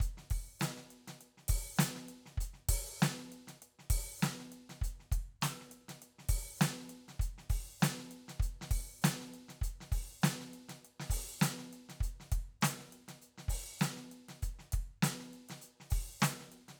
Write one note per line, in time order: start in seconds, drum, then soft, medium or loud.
0.01 closed hi-hat medium
0.01 kick medium
0.18 snare soft
0.31 kick soft
0.31 open hi-hat medium
0.60 closed hi-hat medium
0.60 snare loud
0.60 hi-hat pedal medium
0.78 snare soft
0.91 closed hi-hat soft
1.08 snare medium
1.08 closed hi-hat soft
1.22 closed hi-hat soft
1.38 snare soft
1.48 kick medium
1.48 snare soft
1.48 open hi-hat loud
1.77 closed hi-hat loud
1.77 snare loud
1.77 hi-hat pedal medium
1.96 snare soft
2.09 closed hi-hat soft
2.27 snare soft
2.27 closed hi-hat soft
2.38 closed hi-hat medium
2.38 kick soft
2.54 snare soft
2.69 kick medium
2.69 open hi-hat loud
3.01 closed hi-hat medium
3.01 snare loud
3.01 hi-hat pedal medium
3.19 snare soft
3.33 closed hi-hat soft
3.48 snare soft
3.48 closed hi-hat soft
3.63 closed hi-hat soft
3.80 snare soft
3.91 kick medium
3.91 open hi-hat loud
4.20 closed hi-hat medium
4.20 snare loud
4.20 hi-hat pedal medium
4.40 snare soft
4.53 closed hi-hat soft
4.70 snare soft
4.70 closed hi-hat soft
4.82 closed hi-hat medium
4.82 kick soft
5.00 snare soft
5.12 kick medium
5.12 open hi-hat medium
5.42 closed hi-hat loud
5.42 snare loud
5.42 hi-hat pedal medium
5.61 snare soft
5.72 closed hi-hat soft
5.89 snare medium
5.89 closed hi-hat soft
6.03 closed hi-hat soft
6.19 snare soft
6.30 kick medium
6.30 open hi-hat loud
6.59 closed hi-hat loud
6.59 snare loud
6.59 hi-hat pedal medium
6.81 snare soft
6.90 closed hi-hat soft
7.09 snare soft
7.09 closed hi-hat soft
7.20 closed hi-hat medium
7.20 kick medium
7.39 snare soft
7.50 open hi-hat medium
7.50 kick medium
7.81 closed hi-hat loud
7.81 snare loud
7.81 hi-hat pedal medium
7.99 snare soft
8.12 closed hi-hat soft
8.29 snare soft
8.29 closed hi-hat soft
8.40 closed hi-hat medium
8.40 kick medium
8.62 snare medium
8.72 kick medium
8.72 open hi-hat medium
9.03 closed hi-hat loud
9.03 snare loud
9.03 hi-hat pedal medium
9.21 snare soft
9.35 closed hi-hat soft
9.49 snare soft
9.49 closed hi-hat soft
9.62 closed hi-hat medium
9.62 kick soft
9.81 snare soft
9.93 open hi-hat medium
9.93 kick medium
10.22 closed hi-hat loud
10.22 snare loud
10.22 hi-hat pedal medium
10.41 snare soft
10.54 closed hi-hat soft
10.70 snare medium
10.70 closed hi-hat soft
10.86 closed hi-hat soft
11.01 snare medium
11.11 open hi-hat loud
11.11 kick soft
11.41 closed hi-hat loud
11.41 snare loud
11.41 hi-hat pedal medium
11.59 snare soft
11.74 closed hi-hat soft
11.90 snare soft
11.90 closed hi-hat soft
12.01 closed hi-hat medium
12.01 kick soft
12.21 snare soft
12.33 kick medium
12.33 open hi-hat medium
12.62 closed hi-hat loud
12.62 snare loud
12.62 hi-hat pedal medium
12.80 snare soft
12.93 closed hi-hat soft
13.09 snare soft
13.09 closed hi-hat soft
13.22 closed hi-hat soft
13.38 snare soft
13.49 open hi-hat medium
13.49 kick soft
13.80 closed hi-hat medium
13.80 snare loud
13.80 hi-hat pedal medium
13.97 snare soft
14.12 closed hi-hat soft
14.29 snare soft
14.29 closed hi-hat soft
14.43 closed hi-hat medium
14.43 kick soft
14.60 snare soft
14.73 kick medium
14.73 open hi-hat medium
15.03 open hi-hat loud
15.03 snare loud
15.03 hi-hat pedal medium
15.21 snare soft
15.34 closed hi-hat soft
15.50 snare medium
15.50 closed hi-hat soft
15.62 closed hi-hat medium
15.81 snare soft
15.91 open hi-hat medium
15.91 kick medium
16.21 closed hi-hat loud
16.21 snare loud
16.21 hi-hat pedal medium
16.41 snare soft
16.53 closed hi-hat soft
16.69 snare soft
16.69 closed hi-hat soft